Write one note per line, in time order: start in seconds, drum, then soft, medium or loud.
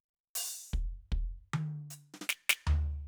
0.35 open hi-hat loud
0.69 hi-hat pedal soft
0.73 kick medium
1.12 kick medium
1.53 high tom loud
1.90 hi-hat pedal medium
2.14 snare soft
2.21 snare soft
2.29 snare medium
2.49 snare loud
2.67 floor tom loud